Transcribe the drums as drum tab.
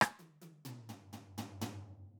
SD |r---------------|
T1 |-go-------------|
T2 |---o------------|
FT |----oooo--------|